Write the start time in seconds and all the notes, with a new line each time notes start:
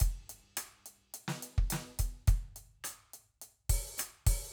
0.01 kick, closed hi-hat
0.30 closed hi-hat
0.58 cross-stick, closed hi-hat
0.87 closed hi-hat
1.15 closed hi-hat
1.29 snare
1.43 closed hi-hat
1.59 kick
1.71 snare, closed hi-hat
2.00 kick, closed hi-hat
2.28 kick, closed hi-hat
2.57 closed hi-hat
2.85 closed hi-hat, cross-stick
3.14 closed hi-hat
3.42 closed hi-hat
3.70 kick, open hi-hat
3.78 kick
3.98 cross-stick, closed hi-hat, hi-hat pedal
4.27 kick, open hi-hat